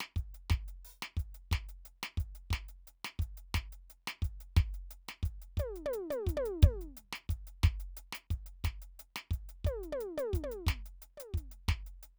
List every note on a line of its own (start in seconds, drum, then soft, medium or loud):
0.01 snare medium
0.01 closed hi-hat medium
0.17 kick medium
0.17 closed hi-hat soft
0.35 closed hi-hat soft
0.51 kick medium
0.51 snare medium
0.51 closed hi-hat medium
0.69 closed hi-hat soft
0.85 hi-hat pedal soft
0.85 open hi-hat medium
1.03 snare medium
1.03 closed hi-hat medium
1.17 kick soft
1.17 closed hi-hat soft
1.35 closed hi-hat soft
1.52 kick medium
1.52 snare medium
1.52 closed hi-hat medium
1.69 closed hi-hat soft
1.86 closed hi-hat medium
2.04 snare medium
2.04 closed hi-hat medium
2.18 kick medium
2.18 closed hi-hat soft
2.36 closed hi-hat soft
2.51 kick medium
2.51 snare medium
2.51 closed hi-hat medium
2.69 closed hi-hat soft
2.88 closed hi-hat medium
3.05 snare medium
3.05 closed hi-hat medium
3.20 kick medium
3.20 closed hi-hat medium
3.38 closed hi-hat medium
3.55 kick medium
3.55 snare medium
3.55 closed hi-hat medium
3.73 closed hi-hat soft
3.91 closed hi-hat medium
4.08 snare medium
4.08 closed hi-hat medium
4.23 kick medium
4.23 closed hi-hat medium
4.41 closed hi-hat medium
4.57 kick medium
4.57 snare medium
4.57 closed hi-hat medium
4.75 closed hi-hat soft
4.91 closed hi-hat medium
5.09 snare medium
5.09 closed hi-hat medium
5.24 kick medium
5.24 closed hi-hat medium
5.42 closed hi-hat soft
5.58 kick medium
5.58 closed hi-hat medium
5.58 high tom medium
5.76 closed hi-hat medium
5.86 high tom loud
5.94 closed hi-hat medium
6.11 closed hi-hat medium
6.11 high tom loud
6.27 kick medium
6.27 closed hi-hat medium
6.37 high tom loud
6.46 closed hi-hat medium
6.63 kick loud
6.63 closed hi-hat medium
6.63 high tom medium
6.82 closed hi-hat soft
6.97 closed hi-hat medium
7.13 snare medium
7.13 closed hi-hat medium
7.30 kick medium
7.30 closed hi-hat medium
7.48 closed hi-hat medium
7.64 kick medium
7.64 snare medium
7.64 closed hi-hat medium
7.81 closed hi-hat medium
7.97 closed hi-hat medium
8.13 snare medium
8.13 closed hi-hat medium
8.31 kick medium
8.31 closed hi-hat medium
8.47 closed hi-hat medium
8.65 kick medium
8.65 snare medium
8.65 closed hi-hat medium
8.83 closed hi-hat medium
9.00 closed hi-hat medium
9.17 snare medium
9.17 closed hi-hat medium
9.31 kick medium
9.31 closed hi-hat medium
9.50 closed hi-hat medium
9.65 kick medium
9.65 closed hi-hat medium
9.65 high tom medium
9.84 closed hi-hat soft
9.93 high tom medium
10.01 closed hi-hat medium
10.18 closed hi-hat medium
10.18 high tom loud
10.34 kick medium
10.34 closed hi-hat medium
10.44 high tom medium
10.52 closed hi-hat medium
10.67 kick medium
10.67 snare medium
10.67 closed hi-hat medium
10.86 closed hi-hat medium
11.03 closed hi-hat medium
11.18 closed hi-hat medium
11.18 high tom soft
11.35 kick soft
11.35 closed hi-hat medium
11.52 closed hi-hat medium
11.69 kick medium
11.69 snare medium
11.69 closed hi-hat soft
11.87 closed hi-hat soft
12.03 closed hi-hat medium